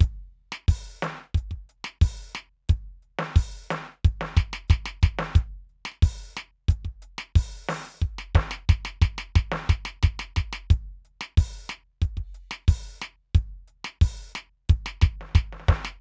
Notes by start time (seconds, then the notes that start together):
0.01 closed hi-hat, kick
0.52 snare
0.68 open hi-hat, kick
1.01 closed hi-hat, snare, hi-hat pedal
1.35 closed hi-hat, kick
1.51 kick
1.69 closed hi-hat
1.85 snare
2.02 open hi-hat, kick
2.33 snare, hi-hat pedal
2.69 closed hi-hat, kick
3.03 closed hi-hat
3.19 snare
3.36 open hi-hat, kick
3.68 closed hi-hat, snare, hi-hat pedal
4.05 closed hi-hat, kick
4.21 snare
4.37 kick, snare
4.53 snare
4.68 kick, snare, hi-hat pedal
4.86 snare
5.01 kick, snare, hi-hat pedal
5.19 snare
5.36 closed hi-hat, kick
5.70 closed hi-hat
5.85 snare
5.92 snare
6.03 open hi-hat, kick
6.35 closed hi-hat, snare, hi-hat pedal
6.69 closed hi-hat, kick
6.85 kick
7.02 closed hi-hat
7.18 snare
7.36 open hi-hat, kick
7.69 open hi-hat, snare
7.95 snare
7.99 kick, hi-hat pedal
8.19 snare
8.35 kick, snare
8.51 snare
8.69 kick, snare
8.85 snare
9.02 kick, snare
9.18 snare
9.36 kick, snare
9.52 snare
9.70 kick, snare
9.85 snare
10.03 kick, snare
10.20 snare
10.37 kick, snare
10.53 snare
10.71 closed hi-hat, kick
11.05 closed hi-hat
11.21 snare
11.38 open hi-hat, kick
11.69 closed hi-hat, snare, hi-hat pedal
12.02 closed hi-hat, kick
12.17 kick
12.22 crash
12.35 closed hi-hat
12.51 snare
12.68 open hi-hat, kick
13.00 closed hi-hat, snare, hi-hat pedal
13.35 closed hi-hat, kick
13.68 closed hi-hat
13.85 snare
14.02 open hi-hat, kick
14.32 snare, hi-hat pedal
14.36 closed hi-hat
14.69 closed hi-hat, kick
14.86 snare
15.02 kick, snare
15.21 snare
15.30 snare
15.32 kick, snare, hi-hat pedal
15.36 snare
15.53 snare
15.60 snare
15.67 kick, snare, hi-hat pedal
15.85 snare